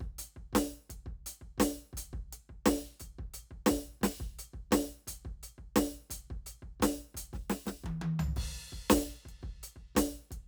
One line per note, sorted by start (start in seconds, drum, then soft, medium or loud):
0.01 kick medium
0.19 closed hi-hat medium
0.37 kick soft
0.53 closed hi-hat loud
0.53 kick medium
0.53 snare loud
0.90 kick soft
0.90 closed hi-hat medium
1.06 kick soft
1.27 closed hi-hat medium
1.42 kick soft
1.58 closed hi-hat loud
1.58 kick soft
1.58 snare loud
1.93 kick soft
1.97 closed hi-hat medium
2.13 kick medium
2.33 closed hi-hat medium
2.50 kick soft
2.66 closed hi-hat medium
2.66 kick medium
2.66 snare loud
3.00 closed hi-hat medium
3.00 kick soft
3.19 kick medium
3.34 closed hi-hat medium
3.51 kick soft
3.67 closed hi-hat medium
3.67 kick medium
3.67 snare loud
4.02 closed hi-hat medium
4.02 kick soft
4.02 snare loud
4.20 kick medium
4.39 closed hi-hat medium
4.54 kick soft
4.71 closed hi-hat medium
4.71 kick medium
4.71 snare loud
5.07 closed hi-hat medium
5.07 kick soft
5.25 kick medium
5.43 closed hi-hat medium
5.58 kick soft
5.76 kick medium
5.76 snare loud
5.76 closed hi-hat medium
6.10 closed hi-hat loud
6.10 kick soft
6.31 kick medium
6.47 closed hi-hat medium
6.63 kick soft
6.80 closed hi-hat loud
6.80 kick medium
6.80 snare loud
7.15 closed hi-hat medium
7.15 kick soft
7.33 kick medium
7.33 snare soft
7.50 snare loud
7.66 kick soft
7.66 snare medium
7.84 kick medium
7.84 high tom medium
8.02 high tom medium
8.20 kick soft
8.20 floor tom medium
8.37 kick medium
8.37 crash medium
8.73 kick soft
8.90 closed hi-hat loud
8.90 kick medium
8.90 snare loud
9.26 kick soft
9.26 closed hi-hat soft
9.41 kick medium
9.41 snare soft
9.63 closed hi-hat medium
9.76 kick soft
9.96 closed hi-hat loud
9.96 kick medium
9.96 snare loud
10.31 kick soft
10.31 closed hi-hat medium